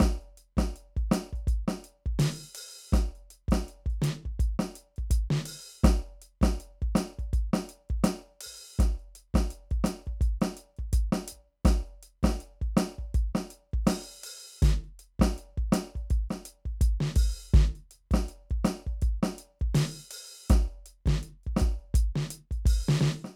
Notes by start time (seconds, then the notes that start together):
0.00 closed hi-hat, kick, snare
0.21 closed hi-hat
0.37 closed hi-hat
0.57 kick, snare, closed hi-hat
0.76 closed hi-hat
0.96 kick, closed hi-hat
1.11 closed hi-hat, snare
1.32 kick, closed hi-hat
1.47 closed hi-hat, kick
1.68 snare, closed hi-hat
1.84 closed hi-hat
2.06 kick
2.19 open hi-hat, snare
2.55 open hi-hat
2.92 open hi-hat, kick, snare, hi-hat pedal
3.15 closed hi-hat
3.30 closed hi-hat
3.48 kick, snare, closed hi-hat
3.68 closed hi-hat
3.86 kick, closed hi-hat
4.02 closed hi-hat, snare
4.25 kick
4.39 closed hi-hat, kick
4.59 snare, closed hi-hat
4.75 closed hi-hat
4.96 kick, closed hi-hat
5.11 closed hi-hat, kick
5.30 snare
5.45 open hi-hat
5.83 closed hi-hat, kick, snare, hi-hat pedal
6.06 closed hi-hat
6.21 closed hi-hat
6.41 kick, snare, closed hi-hat
6.60 closed hi-hat
6.82 kick, closed hi-hat
6.95 closed hi-hat, snare
7.18 kick, closed hi-hat
7.33 closed hi-hat, kick
7.53 snare, closed hi-hat
7.69 closed hi-hat
7.89 kick, closed hi-hat
8.04 open hi-hat, snare
8.41 open hi-hat
8.46 kick
8.62 open hi-hat
8.78 closed hi-hat, kick, snare, hi-hat pedal
8.99 closed hi-hat
9.15 closed hi-hat
9.34 kick, snare, closed hi-hat
9.50 closed hi-hat
9.71 kick, closed hi-hat
9.84 closed hi-hat, snare
10.06 kick, closed hi-hat
10.21 closed hi-hat, kick
10.41 snare, closed hi-hat
10.57 closed hi-hat
10.76 kick, closed hi-hat
10.93 closed hi-hat, kick
11.12 snare
11.28 open hi-hat
11.32 kick
11.65 open hi-hat, kick, snare, hi-hat pedal
11.86 closed hi-hat
12.02 closed hi-hat
12.23 kick, snare, closed hi-hat
12.29 snare
12.40 closed hi-hat
12.61 kick, closed hi-hat
12.77 closed hi-hat, snare
12.98 kick, closed hi-hat
13.14 closed hi-hat, kick
13.35 snare, closed hi-hat
13.50 closed hi-hat
13.71 kick, closed hi-hat
13.85 open hi-hat, snare, hi-hat pedal
14.23 open hi-hat
14.62 open hi-hat, kick, snare, hi-hat pedal
14.84 closed hi-hat
14.99 closed hi-hat
15.19 kick, snare, closed hi-hat
15.38 closed hi-hat
15.57 kick, closed hi-hat
15.72 closed hi-hat, snare
15.95 kick, closed hi-hat
16.10 closed hi-hat, kick
16.30 snare, closed hi-hat
16.45 closed hi-hat
16.65 kick, closed hi-hat
16.81 closed hi-hat, kick
17.00 snare
17.16 open hi-hat, kick
17.54 open hi-hat, kick, snare, hi-hat pedal
17.75 closed hi-hat
17.91 closed hi-hat
18.11 kick, snare, closed hi-hat
18.28 closed hi-hat
18.50 kick, closed hi-hat
18.64 closed hi-hat, snare
18.86 kick, closed hi-hat
19.02 closed hi-hat, kick
19.23 snare, closed hi-hat
19.38 closed hi-hat
19.59 kick, closed hi-hat
19.75 open hi-hat, snare
20.11 open hi-hat
20.48 closed hi-hat, kick, snare, hi-hat pedal
20.71 closed hi-hat
20.86 closed hi-hat
21.06 kick, snare, closed hi-hat
21.23 closed hi-hat
21.43 kick, closed hi-hat
21.56 closed hi-hat, snare
21.61 kick
21.79 closed hi-hat
21.94 closed hi-hat, kick
22.16 snare
22.30 closed hi-hat
22.51 kick, closed hi-hat
22.65 open hi-hat, kick
22.88 snare
23.01 kick, snare
23.24 snare